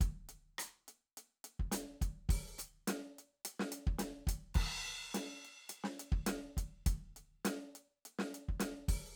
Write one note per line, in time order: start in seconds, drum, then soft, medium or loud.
0.01 kick medium
0.01 closed hi-hat medium
0.29 closed hi-hat medium
0.59 closed hi-hat loud
0.59 cross-stick medium
0.88 closed hi-hat medium
1.18 closed hi-hat medium
1.45 closed hi-hat medium
1.60 kick medium
1.72 closed hi-hat loud
1.72 snare medium
2.02 kick medium
2.02 closed hi-hat medium
2.29 kick medium
2.29 open hi-hat loud
2.59 hi-hat pedal loud
2.88 snare medium
2.88 closed hi-hat loud
3.19 closed hi-hat medium
3.45 closed hi-hat loud
3.60 snare medium
3.72 closed hi-hat medium
3.87 kick medium
3.99 snare medium
3.99 closed hi-hat loud
4.27 kick medium
4.27 closed hi-hat loud
4.55 kick medium
4.55 crash loud
4.85 closed hi-hat soft
5.15 snare medium
5.15 closed hi-hat medium
5.45 closed hi-hat soft
5.70 closed hi-hat medium
5.84 snare medium
6.00 closed hi-hat medium
6.12 kick medium
6.27 snare medium
6.27 closed hi-hat loud
6.57 kick medium
6.57 closed hi-hat medium
6.86 kick medium
6.86 closed hi-hat loud
7.17 closed hi-hat medium
7.45 snare medium
7.45 closed hi-hat loud
7.75 closed hi-hat medium
8.06 closed hi-hat medium
8.19 snare medium
8.35 closed hi-hat medium
8.49 kick medium
8.60 snare medium
8.60 closed hi-hat loud
8.89 kick medium
8.89 open hi-hat loud